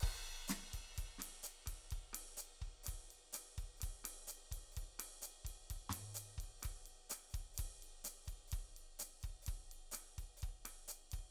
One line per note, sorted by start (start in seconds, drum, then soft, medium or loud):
0.01 kick medium
0.01 crash medium
0.49 snare medium
0.49 hi-hat pedal medium
0.49 ride medium
0.74 kick soft
0.74 ride soft
0.79 kick soft
0.95 kick soft
0.95 hi-hat pedal soft
0.95 ride medium
1.04 kick soft
1.19 cross-stick soft
1.19 snare soft
1.19 ride medium
1.44 hi-hat pedal medium
1.44 ride soft
1.67 kick soft
1.67 cross-stick soft
1.67 ride medium
1.73 kick soft
1.91 kick soft
1.91 ride soft
1.98 kick soft
2.13 cross-stick soft
2.13 snare soft
2.13 ride medium
2.38 hi-hat pedal medium
2.62 kick soft
2.62 ride soft
2.68 kick soft
2.84 cross-stick soft
2.84 hi-hat pedal soft
2.84 ride medium
2.89 kick soft
2.94 kick soft
3.11 ride soft
3.33 cross-stick soft
3.33 hi-hat pedal medium
3.33 ride medium
3.58 kick soft
3.58 ride soft
3.64 kick soft
3.78 cross-stick soft
3.78 hi-hat pedal soft
3.82 kick soft
3.82 ride medium
3.89 kick soft
4.05 cross-stick soft
4.05 ride medium
4.28 hi-hat pedal medium
4.28 ride soft
4.52 kick soft
4.52 ride medium
4.57 kick soft
4.72 hi-hat pedal soft
4.77 kick soft
4.77 ride soft
4.83 kick soft
4.99 cross-stick soft
4.99 snare soft
4.99 ride medium
5.22 hi-hat pedal medium
5.22 ride soft
5.45 kick soft
5.45 ride medium
5.50 kick soft
5.71 kick soft
5.71 ride medium
5.76 kick soft
5.90 snare soft
5.90 mid tom medium
5.90 ride medium
6.15 hi-hat pedal medium
6.15 ride medium
6.38 kick soft
6.38 ride soft
6.44 kick soft
6.60 cross-stick soft
6.60 snare soft
6.60 hi-hat pedal soft
6.60 ride medium
6.65 kick soft
6.71 kick soft
6.86 ride soft
7.10 cross-stick soft
7.10 snare soft
7.10 hi-hat pedal medium
7.10 ride medium
7.31 kick soft
7.31 hi-hat pedal soft
7.35 ride soft
7.40 kick soft
7.55 hi-hat pedal soft
7.55 ride medium
7.59 kick soft
7.65 kick soft
7.83 ride soft
8.05 snare soft
8.05 hi-hat pedal medium
8.05 ride medium
8.26 kick soft
8.26 hi-hat pedal soft
8.26 ride soft
8.33 kick soft
8.48 hi-hat pedal soft
8.52 kick soft
8.52 ride medium
8.59 kick soft
8.77 ride soft
9.00 snare soft
9.00 hi-hat pedal medium
9.00 ride medium
9.21 kick soft
9.21 hi-hat pedal soft
9.21 ride soft
9.30 kick soft
9.43 hi-hat pedal soft
9.47 kick soft
9.47 snare soft
9.47 ride medium
9.54 kick soft
9.72 ride soft
9.92 cross-stick soft
9.92 snare soft
9.92 hi-hat pedal medium
9.92 ride medium
10.19 kick soft
10.19 ride soft
10.24 kick soft
10.38 hi-hat pedal soft
10.43 kick soft
10.43 ride soft
10.49 kick soft
10.65 cross-stick soft
10.65 snare soft
10.65 ride medium
10.88 hi-hat pedal medium
10.88 ride soft
11.11 kick soft
11.11 hi-hat pedal soft
11.11 ride soft
11.19 kick soft